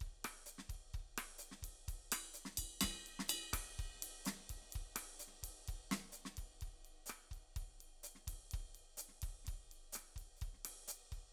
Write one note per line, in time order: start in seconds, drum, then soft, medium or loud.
0.01 kick soft
0.01 ride soft
0.07 kick soft
0.25 cross-stick medium
0.25 ride medium
0.46 hi-hat pedal medium
0.59 snare soft
0.70 kick soft
0.70 ride soft
0.75 kick soft
0.94 kick soft
0.94 ride soft
1.00 kick soft
1.18 cross-stick medium
1.18 ride medium
1.39 hi-hat pedal medium
1.43 ride soft
1.52 snare soft
1.63 kick soft
1.63 ride medium
1.68 kick soft
1.88 kick soft
1.88 ride medium
1.94 kick soft
2.12 cross-stick medium
2.12 ride bell loud
2.34 hi-hat pedal medium
2.34 ride soft
2.46 snare soft
2.58 kick soft
2.58 ride bell medium
2.64 kick soft
2.81 kick soft
2.81 snare medium
2.81 ride bell loud
3.07 ride soft
3.20 snare medium
3.29 hi-hat pedal medium
3.29 ride bell loud
3.54 kick soft
3.54 cross-stick medium
3.54 ride loud
3.59 kick soft
3.79 kick soft
3.79 ride soft
3.85 kick soft
3.96 snare soft
4.03 ride medium
4.25 snare medium
4.25 hi-hat pedal medium
4.25 ride medium
4.50 kick soft
4.50 ride medium
4.55 kick soft
4.61 snare soft
4.70 hi-hat pedal soft
4.70 ride medium
4.76 kick soft
4.81 kick soft
4.96 cross-stick medium
4.96 ride medium
5.20 hi-hat pedal medium
5.28 snare soft
5.32 snare soft
5.43 kick soft
5.43 ride medium
5.48 kick soft
5.68 kick soft
5.68 ride soft
5.74 kick soft
5.92 snare medium
5.92 ride medium
6.13 hi-hat pedal medium
6.13 ride soft
6.26 snare soft
6.38 kick soft
6.38 ride soft
6.43 kick soft
6.61 kick soft
6.61 ride soft
6.68 kick soft
6.85 ride soft
7.06 cross-stick medium
7.06 hi-hat pedal medium
7.10 ride soft
7.31 kick soft
7.31 ride soft
7.37 kick soft
7.56 kick soft
7.56 ride soft
7.62 kick soft
7.68 snare soft
7.77 snare soft
7.77 ride soft
8.04 hi-hat pedal medium
8.04 ride soft
8.15 snare soft
8.28 kick soft
8.28 ride medium
8.33 kick soft
8.52 kick soft
8.52 ride soft
8.60 kick soft
8.75 ride soft
8.98 hi-hat pedal medium
8.98 ride medium
9.09 snare soft
9.22 kick soft
9.22 ride medium
9.29 kick soft
9.45 kick soft
9.45 snare soft
9.45 ride soft
9.54 kick soft
9.72 ride soft
9.93 cross-stick soft
9.93 snare soft
9.93 hi-hat pedal medium
9.93 ride medium
10.16 kick soft
10.16 ride soft
10.21 kick soft
10.37 hi-hat pedal soft
10.42 kick soft
10.42 ride soft
10.48 kick soft
10.54 snare soft
10.65 cross-stick soft
10.65 ride medium
10.88 hi-hat pedal medium
10.88 ride soft
11.12 kick soft
11.12 ride soft
11.18 kick soft